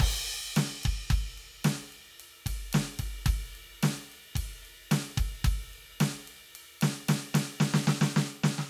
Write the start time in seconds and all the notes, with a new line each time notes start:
0.01 kick, crash
0.28 ride
0.56 snare, ride
0.83 kick, ride
1.10 kick, ride
1.37 ride
1.64 snare, ride
1.92 ride
2.20 ride
2.46 kick, ride
2.73 snare, ride
2.99 kick, ride
3.26 kick, ride
3.55 ride
3.83 snare, ride
4.12 ride
4.35 kick, ride
4.65 ride
4.91 snare, ride
5.17 kick, ride
5.44 kick, ride
5.73 ride
6.00 snare, ride
6.27 ride
6.55 ride
6.81 snare, ride
7.08 snare, ride
7.34 snare, ride
7.60 snare
7.74 snare
7.87 snare
8.01 snare
8.16 snare
8.43 snare
8.58 snare